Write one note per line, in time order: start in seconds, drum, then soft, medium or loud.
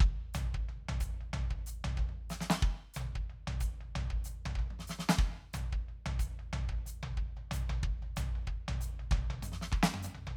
0.01 kick loud
0.34 floor tom loud
0.34 hi-hat pedal medium
0.54 kick medium
0.69 floor tom medium
0.89 floor tom loud
1.00 kick medium
1.00 floor tom soft
1.00 hi-hat pedal medium
1.21 floor tom soft
1.33 floor tom loud
1.51 kick medium
1.51 floor tom soft
1.66 floor tom soft
1.66 hi-hat pedal medium
1.84 floor tom loud
1.97 kick medium
1.97 floor tom medium
2.09 high tom soft
2.30 snare medium
2.30 hi-hat pedal medium
2.41 snare medium
2.50 snare loud
2.62 kick loud
2.94 floor tom loud
2.94 hi-hat pedal medium
3.01 floor tom medium
3.15 kick medium
3.30 floor tom soft
3.47 floor tom loud
3.60 kick medium
3.60 floor tom soft
3.60 hi-hat pedal medium
3.81 floor tom soft
3.95 floor tom loud
4.10 kick medium
4.10 floor tom soft
4.24 floor tom soft
4.24 hi-hat pedal medium
4.46 floor tom loud
4.55 kick medium
4.55 floor tom medium
4.70 high tom soft
4.79 kick soft
4.79 snare medium
4.87 snare medium
4.87 hi-hat pedal medium
4.99 snare medium
5.09 snare loud
5.19 kick loud
5.19 floor tom soft
5.53 floor tom loud
5.53 hi-hat pedal medium
5.73 kick medium
5.89 floor tom soft
6.06 floor tom loud
6.19 kick medium
6.19 floor tom soft
6.19 hi-hat pedal medium
6.39 floor tom soft
6.53 floor tom loud
6.69 kick medium
6.69 floor tom soft
6.86 floor tom soft
6.86 hi-hat pedal medium
7.03 floor tom loud
7.17 kick medium
7.17 floor tom soft
7.37 floor tom soft
7.51 floor tom loud
7.51 hi-hat pedal medium
7.69 floor tom loud
7.83 kick medium
7.83 floor tom soft
8.02 floor tom soft
8.16 floor tom loud
8.16 hi-hat pedal medium
8.35 floor tom soft
8.47 kick medium
8.47 floor tom soft
8.68 floor tom loud
8.81 floor tom soft
8.81 hi-hat pedal medium
8.99 floor tom soft
9.11 kick medium
9.11 floor tom loud
9.30 floor tom loud
9.43 hi-hat pedal medium
9.43 high tom medium
9.52 snare medium
9.62 snare medium
9.72 kick medium
9.72 cross-stick medium
9.83 snare loud
9.94 high tom loud
10.03 hi-hat pedal medium
10.03 high tom medium
10.15 floor tom medium
10.27 floor tom medium